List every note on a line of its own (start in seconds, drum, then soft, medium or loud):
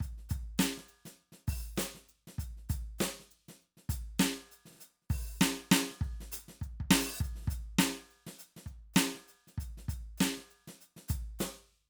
0.01 closed hi-hat medium
0.01 kick medium
0.18 snare soft
0.30 closed hi-hat medium
0.30 kick medium
0.59 closed hi-hat loud
0.59 snare loud
0.59 hi-hat pedal medium
0.78 snare soft
0.89 closed hi-hat soft
1.06 closed hi-hat medium
1.06 snare soft
1.19 closed hi-hat soft
1.33 snare soft
1.48 open hi-hat medium
1.48 kick medium
1.77 closed hi-hat loud
1.77 snare loud
1.77 hi-hat pedal medium
1.95 snare soft
2.09 closed hi-hat soft
2.28 snare soft
2.39 closed hi-hat medium
2.39 kick medium
2.58 snare soft
2.70 open hi-hat loud
2.70 kick medium
2.99 closed hi-hat loud
2.99 snare loud
2.99 hi-hat pedal medium
3.20 snare soft
3.31 closed hi-hat soft
3.49 snare soft
3.49 closed hi-hat soft
3.62 closed hi-hat soft
3.78 snare soft
3.90 closed hi-hat loud
3.90 kick medium
4.19 closed hi-hat loud
4.19 snare loud
4.19 hi-hat pedal medium
4.51 closed hi-hat medium
4.66 snare soft
4.66 closed hi-hat soft
4.71 snare soft
4.75 snare soft
4.80 closed hi-hat medium
4.80 snare soft
5.03 snare soft
5.10 open hi-hat medium
5.10 kick medium
5.41 closed hi-hat loud
5.41 snare loud
5.41 hi-hat pedal medium
5.72 closed hi-hat loud
5.72 snare loud
5.92 snare soft
6.02 kick medium
6.02 closed hi-hat soft
6.21 snare soft
6.32 closed hi-hat loud
6.49 snare soft
6.62 kick soft
6.62 closed hi-hat soft
6.81 kick soft
6.91 open hi-hat loud
6.91 snare loud
7.19 kick medium
7.19 hi-hat pedal medium
7.24 closed hi-hat medium
7.36 snare soft
7.40 snare soft
7.43 snare soft
7.46 kick medium
7.46 snare soft
7.50 closed hi-hat medium
7.50 snare soft
7.79 closed hi-hat loud
7.79 snare loud
7.84 snare medium
8.11 closed hi-hat soft
8.27 snare medium
8.39 closed hi-hat medium
8.57 snare soft
8.67 kick soft
8.67 closed hi-hat soft
8.94 closed hi-hat loud
8.94 snare loud
8.94 hi-hat pedal soft
9.15 snare soft
9.28 closed hi-hat soft
9.48 snare soft
9.48 closed hi-hat soft
9.58 closed hi-hat medium
9.58 kick medium
9.78 snare soft
9.89 open hi-hat medium
9.89 kick medium
10.18 closed hi-hat medium
10.18 snare loud
10.18 hi-hat pedal medium
10.38 snare soft
10.51 closed hi-hat soft
10.68 snare soft
10.68 closed hi-hat soft
10.81 closed hi-hat medium
10.97 snare soft
11.09 closed hi-hat loud
11.09 kick medium
11.40 closed hi-hat medium
11.40 snare loud
11.40 hi-hat pedal medium
11.56 closed hi-hat soft